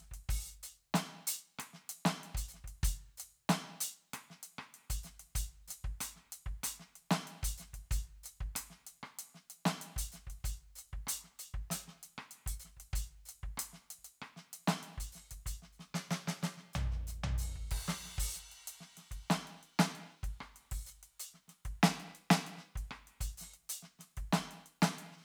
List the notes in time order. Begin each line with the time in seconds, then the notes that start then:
0.01 snare
0.12 kick, closed hi-hat
0.29 open hi-hat, kick
0.63 open hi-hat, hi-hat pedal
0.94 snare, closed hi-hat
1.12 snare
1.27 closed hi-hat
1.59 cross-stick, closed hi-hat
1.74 snare
1.90 closed hi-hat
2.06 snare
2.24 closed hi-hat
2.28 snare
2.35 open hi-hat, kick
2.49 hi-hat pedal
2.54 snare
2.64 kick, closed hi-hat
2.84 open hi-hat, kick
3.18 closed hi-hat, hi-hat pedal
3.50 snare, closed hi-hat
3.66 snare
3.81 closed hi-hat
4.14 cross-stick, closed hi-hat
4.31 snare
4.43 closed hi-hat
4.59 cross-stick
4.74 closed hi-hat
4.90 open hi-hat, kick
5.04 snare, hi-hat pedal
5.20 kick, closed hi-hat
5.36 open hi-hat, kick
5.56 kick
5.68 snare, closed hi-hat, hi-hat pedal
5.85 kick
6.01 closed hi-hat, cross-stick
6.16 snare
6.33 closed hi-hat
6.46 kick
6.64 closed hi-hat, cross-stick
6.80 snare
6.96 closed hi-hat
7.11 snare
7.28 closed hi-hat
7.43 open hi-hat, kick
7.58 snare, hi-hat pedal
7.74 kick, closed hi-hat
7.91 open hi-hat, kick
8.24 closed hi-hat, hi-hat pedal
8.41 kick
8.56 cross-stick, closed hi-hat
8.70 snare
8.87 closed hi-hat
9.03 cross-stick
9.19 closed hi-hat
9.35 snare
9.50 closed hi-hat
9.66 snare
9.82 closed hi-hat
9.97 open hi-hat, kick
10.12 snare, hi-hat pedal
10.27 kick, closed hi-hat
10.45 open hi-hat, kick
10.76 closed hi-hat, hi-hat pedal
10.93 kick
11.07 closed hi-hat, cross-stick
11.24 snare
11.39 closed hi-hat
11.54 kick
11.71 closed hi-hat, snare
11.88 snare
12.03 closed hi-hat
12.18 cross-stick
12.31 closed hi-hat
12.47 kick, open hi-hat
12.60 hi-hat pedal
12.65 snare
12.77 kick, closed hi-hat
12.94 open hi-hat, kick
13.26 closed hi-hat, hi-hat pedal
13.44 kick
13.58 cross-stick, closed hi-hat
13.73 snare
13.91 closed hi-hat
13.99 kick
14.05 closed hi-hat
14.22 cross-stick
14.37 snare
14.54 closed hi-hat
14.68 snare
14.83 closed hi-hat
14.98 open hi-hat, kick
15.13 snare, hi-hat pedal
15.31 kick, closed hi-hat
15.46 open hi-hat, kick
15.63 snare
15.73 hi-hat pedal
15.80 snare
15.95 snare
16.11 snare
16.28 snare
16.43 snare
16.57 snare
16.74 floor tom, hi-hat pedal
16.91 snare
17.07 snare, hi-hat pedal
17.24 floor tom
17.38 hi-hat pedal
17.51 snare
17.56 kick
17.71 kick, crash
17.88 snare
18.05 snare
18.18 open hi-hat, kick
18.36 snare, hi-hat pedal
18.52 closed hi-hat
18.68 closed hi-hat
18.81 snare
18.97 snare, closed hi-hat
19.11 kick, closed hi-hat
19.31 snare
19.47 closed hi-hat
19.63 closed hi-hat
19.79 snare
19.96 closed hi-hat
20.09 snare
20.24 kick, closed hi-hat
20.41 cross-stick
20.56 closed hi-hat
20.72 kick, open hi-hat
20.87 hi-hat pedal
21.03 closed hi-hat
21.20 closed hi-hat
21.34 snare
21.48 snare, closed hi-hat
21.65 kick, closed hi-hat
21.83 snare
22.00 closed hi-hat
22.15 closed hi-hat
22.31 snare
22.47 closed hi-hat
22.58 snare
22.76 kick, closed hi-hat
22.91 cross-stick
23.08 closed hi-hat
23.21 closed hi-hat, kick
23.38 snare, hi-hat pedal
23.54 closed hi-hat
23.70 closed hi-hat
23.83 snare
23.99 snare, closed hi-hat
24.17 kick, closed hi-hat
24.33 snare
24.51 closed hi-hat
24.66 closed hi-hat
24.82 snare
24.99 closed hi-hat
25.12 snare
25.17 snare
25.20 snare